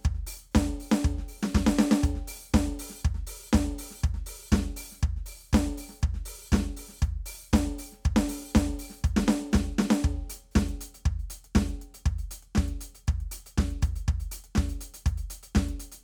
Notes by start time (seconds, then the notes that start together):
0.01 snare, hi-hat pedal
0.05 kick, closed hi-hat
0.15 snare
0.27 open hi-hat
0.52 closed hi-hat, kick, snare, hi-hat pedal
0.62 snare
0.80 open hi-hat
0.92 snare
1.02 kick, hi-hat pedal
1.07 closed hi-hat
1.19 snare
1.29 open hi-hat
1.43 snare
1.51 hi-hat pedal
1.55 kick, snare
1.67 snare
1.79 snare
1.92 snare
1.99 hi-hat pedal
2.04 closed hi-hat, kick
2.16 snare
2.28 open hi-hat
2.50 hi-hat pedal
2.54 kick, snare, closed hi-hat
2.80 open hi-hat
2.90 snare
3.00 hi-hat pedal
3.05 kick, closed hi-hat
3.15 snare
3.27 open hi-hat
3.48 hi-hat pedal
3.53 kick, snare, closed hi-hat
3.61 snare
3.79 open hi-hat
3.91 snare
4.00 kick, closed hi-hat, hi-hat pedal
4.15 snare
4.27 open hi-hat
4.50 kick, snare, closed hi-hat, hi-hat pedal
4.60 snare
4.77 open hi-hat
4.92 snare
5.00 kick, closed hi-hat, hi-hat pedal
5.17 snare
5.26 open hi-hat
5.50 closed hi-hat, kick, hi-hat pedal
5.55 snare
5.70 snare
5.78 open hi-hat
5.89 snare
5.98 hi-hat pedal
6.03 kick, closed hi-hat
6.15 snare
6.26 open hi-hat
6.49 kick, hi-hat pedal
6.54 snare, closed hi-hat
6.61 snare
6.77 open hi-hat
6.89 snare
7.00 kick, closed hi-hat, hi-hat pedal
7.26 open hi-hat
7.51 kick, snare, hi-hat pedal
7.55 closed hi-hat
7.79 open hi-hat
7.93 snare
8.02 kick, closed hi-hat, hi-hat pedal
8.17 snare
8.29 open hi-hat
8.51 hi-hat pedal
8.56 closed hi-hat, kick, snare
8.79 open hi-hat
8.91 snare
8.99 hi-hat pedal
9.05 closed hi-hat, kick
9.17 snare
9.29 snare
9.52 kick, snare, hi-hat pedal
9.79 snare
9.91 snare
10.05 kick
10.30 closed hi-hat
10.52 hi-hat pedal
10.56 kick, snare
10.69 closed hi-hat
10.81 closed hi-hat
10.95 closed hi-hat
11.06 kick, closed hi-hat
11.20 closed hi-hat
11.31 closed hi-hat
11.45 closed hi-hat
11.56 kick, snare
11.69 closed hi-hat
11.82 closed hi-hat
11.95 closed hi-hat
12.06 kick, closed hi-hat
12.19 closed hi-hat
12.31 closed hi-hat
12.43 closed hi-hat
12.56 kick, snare
12.69 closed hi-hat
12.81 closed hi-hat
12.95 closed hi-hat
13.08 kick, closed hi-hat
13.21 closed hi-hat
13.32 closed hi-hat
13.47 closed hi-hat
13.58 kick, snare
13.71 closed hi-hat
13.83 closed hi-hat, kick
13.96 closed hi-hat
14.09 kick, closed hi-hat
14.20 closed hi-hat
14.32 closed hi-hat
14.45 closed hi-hat
14.56 kick, snare
14.69 closed hi-hat
14.81 closed hi-hat
14.94 closed hi-hat
15.06 kick, closed hi-hat
15.18 closed hi-hat
15.31 closed hi-hat
15.43 closed hi-hat
15.56 kick, snare
15.69 closed hi-hat
15.80 closed hi-hat
15.92 closed hi-hat